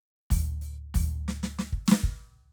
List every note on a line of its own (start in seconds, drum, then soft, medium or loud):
0.31 open hi-hat medium
0.31 kick medium
0.31 floor tom medium
0.62 hi-hat pedal soft
0.95 open hi-hat medium
0.95 kick medium
0.95 floor tom medium
1.29 snare medium
1.44 snare medium
1.59 snare medium
1.73 kick soft
1.86 snare loud
1.86 hi-hat pedal soft
1.92 snare loud
2.04 kick medium